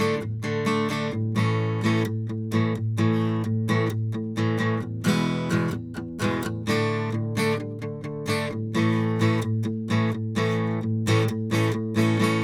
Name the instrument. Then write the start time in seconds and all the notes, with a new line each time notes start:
acoustic guitar
0.00 D3 A3 D4
0.23 A2
0.44 D3 A3
0.68 A3 D4
0.91 D3 A3 D4
1.13 A2
1.37 A2 E3 A3 C#4
1.85 A2 E3 A3 C#4
2.06 A2
2.29 A2
2.53 A2 E3 A3
2.77 A2
2.98 A2 E3 A3
3.45 A2
3.70 A2 E3 A3
3.92 A2
4.13 A2
4.38 A2 E3 A3
4.59 A2 E3 A3
4.82 E2
5.06 E2 B2 E3 G#3 B3
5.10 E4
5.51 E2 B2 B3 E4
5.55 E3 G#3
5.74 E2
5.96 E2
6.21 E2 B2 E3
6.25 G#3 B3
6.43 E2 A2
6.68 A2 D3 A3 D4
7.13 A2 D3
7.38 D3 A3 D4
7.59 D3
7.83 D3 A3
8.07 A3
8.30 A3 D4
8.52 A2 D3
8.76 A2 E3 A3
8.80 C#4
9.22 A2 E3 A3 C#4
9.43 A2
9.64 A2
9.91 A2 E3 A3 C#4
10.13 A2
10.37 A2 E3 A3 C#4
10.85 A2
11.08 A2 E3 A3 C#4
11.30 A2
11.52 A2 E3 A3 C#4
11.73 A2
11.97 A2 E3 A3 C#4
12.21 A2 E3 A3
12.25 C#4